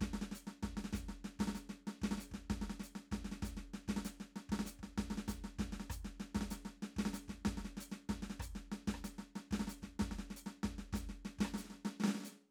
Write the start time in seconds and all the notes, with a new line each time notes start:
0.01 kick, snare
0.14 snare
0.22 snare
0.35 hi-hat pedal
0.47 snare
0.63 kick, snare
0.77 snare
0.85 snare
0.93 kick, snare, hi-hat pedal
1.09 snare
1.25 snare
1.39 kick, snare
1.48 snare
1.55 snare, hi-hat pedal
1.70 snare
1.87 snare
2.02 kick, snare
2.11 snare
2.18 snare, hi-hat pedal
2.32 kick, snare
2.50 kick, snare
2.62 snare
2.70 snare
2.84 hi-hat pedal
2.96 snare
3.12 kick, snare
3.25 snare
3.32 snare
3.39 kick, snare
3.43 snare, hi-hat pedal
3.57 snare
3.74 snare
3.88 kick, snare
3.97 snare
4.05 snare, hi-hat pedal
4.20 snare
4.36 snare
4.49 kick, snare
4.60 snare
4.66 snare, hi-hat pedal
4.79 kick
4.83 snare
4.98 kick, snare
5.10 snare
5.18 snare
5.28 kick, snare, hi-hat pedal
5.44 snare
5.59 kick, snare
5.73 snare
5.80 snare
5.90 kick, cross-stick, hi-hat pedal
6.05 snare
6.20 snare
6.35 kick, snare
6.41 snare
6.51 snare, hi-hat pedal
6.65 snare
6.83 snare
6.97 kick, snare
7.06 snare
7.14 snare, hi-hat pedal
7.28 kick, snare
7.45 kick, snare
7.58 snare
7.65 snare
7.77 snare, hi-hat pedal
7.92 snare
8.09 kick, snare
8.23 snare
8.30 snare
8.40 kick, cross-stick, hi-hat pedal
8.55 snare
8.72 snare
8.88 kick, snare
8.94 kick, cross-stick
9.04 snare, hi-hat pedal
9.19 snare
9.36 snare
9.51 kick, snare
9.60 snare
9.67 snare, hi-hat pedal
9.83 kick, snare
10.00 kick, snare
10.11 snare
10.19 snare
10.31 snare
10.37 hi-hat pedal
10.46 snare
10.64 kick, snare
10.79 snare
10.93 kick, snare, hi-hat pedal
11.01 kick
11.09 snare
11.25 snare
11.39 kick, snare
11.45 cross-stick
11.54 snare, hi-hat pedal
11.60 snare
11.65 snare
11.70 snare
11.79 snare
11.85 snare
12.00 snare
12.04 snare
12.08 snare
12.11 snare
12.15 snare
12.18 snare
12.21 snare
12.23 snare, hi-hat pedal
12.27 snare
12.32 snare